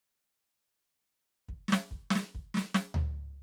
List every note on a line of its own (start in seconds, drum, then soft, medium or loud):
1.48 kick soft
1.68 snare loud
1.72 snare loud
1.91 kick soft
2.10 snare loud
2.15 snare loud
2.35 kick soft
2.54 snare loud
2.57 snare loud
2.74 snare loud
2.94 floor tom loud